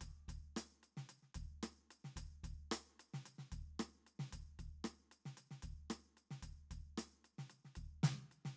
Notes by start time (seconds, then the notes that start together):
0.01 kick, percussion
0.28 kick, percussion
0.56 cross-stick, percussion
0.83 percussion
0.97 snare
1.09 percussion
1.23 snare
1.35 kick, percussion
1.63 cross-stick, percussion
1.91 percussion
2.04 snare
2.16 kick, percussion
2.44 kick, percussion
2.71 cross-stick, percussion
3.00 percussion
3.14 snare
3.26 percussion
3.39 snare
3.52 kick, percussion
3.79 cross-stick, percussion
4.07 percussion
4.19 snare
4.33 kick, percussion
4.59 kick, percussion
4.84 cross-stick, percussion
5.11 percussion
5.26 snare
5.37 percussion
5.51 snare
5.62 kick, percussion
5.90 cross-stick, percussion
6.17 percussion
6.31 snare
6.43 kick, percussion
6.71 kick, percussion
6.98 cross-stick, percussion
7.24 percussion
7.39 snare
7.50 percussion
7.65 snare
7.75 kick, percussion
8.03 snare, percussion
8.31 percussion
8.45 snare